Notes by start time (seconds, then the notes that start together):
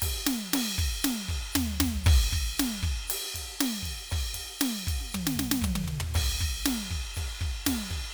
0.01 kick, hi-hat pedal, crash
0.27 snare, crash
0.53 snare, hi-hat pedal, crash
0.79 kick, crash
1.02 snare, hi-hat pedal
1.06 crash
1.29 kick, crash
1.53 snare, floor tom, hi-hat pedal
1.81 kick, snare, floor tom
2.04 kick, hi-hat pedal, crash
2.33 kick
2.58 snare, hi-hat pedal, crash
2.83 kick, crash
3.06 snare, hi-hat pedal
3.11 crash
3.35 kick, crash
3.60 snare, hi-hat pedal, crash
3.83 kick, crash
4.10 kick, hi-hat pedal, crash
4.34 kick, crash
4.60 snare, hi-hat pedal, crash
4.88 kick, crash
5.01 snare
5.12 kick, hi-hat pedal, high tom
5.27 snare
5.36 kick, snare
5.52 snare
5.62 kick, hi-hat pedal, high tom
5.76 high tom
5.85 kick, mid tom
6.01 floor tom
6.15 kick, hi-hat pedal, crash
6.41 kick, crash
6.64 snare, hi-hat pedal, crash
6.91 kick, crash
7.15 kick, hi-hat pedal, crash
7.41 kick, crash
7.66 kick, snare, hi-hat pedal, crash
7.91 kick, crash